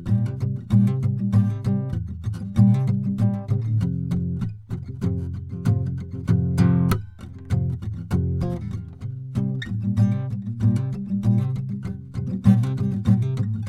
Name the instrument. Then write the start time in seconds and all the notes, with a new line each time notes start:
acoustic guitar
0.08 A#2 G3
0.28 C3
0.42 C3 G#3
0.58 A#2
0.72 A#2 G3
0.89 C3
1.04 C3 G3
1.19 A#2 G3
1.34 A#2 G3
1.52 C3
1.66 C3 G3
2.57 A#2 G3
2.76 C3
2.89 C3 G3
3.05 C3 G3
3.19 A#2 G3
3.35 C3
3.50 C3
3.63 D3
3.70 A2
3.82 F2 C3
4.12 E2 C3
5.03 F2 C3
5.35 F2 C3
5.51 F2 C3
5.67 F2 C3 F3
5.88 F2
5.99 F2 C3
6.12 F2 C3
6.29 F2 C3 F3
6.59 F2 C3 F3
7.22 F2 C3
7.35 C3
7.52 C3 F3
8.12 E2 C3
8.43 F3
8.72 B2
9.03 C3
9.37 C3 G3 C4
9.63 A2
9.71 F#3
9.83 A#2 G3
9.98 A#2 G3
10.13 C3
10.32 B2 G3
10.48 A#2
10.63 A#2 G3
10.78 C3
10.94 C3
11.09 G3
11.24 A#2 G3
11.34 B2
11.42 C3
11.57 C3
11.72 C3
11.87 C3
12.17 C3
12.33 A#2
12.46 A#2
12.65 C3
12.79 C3
13.07 A#2
13.24 C3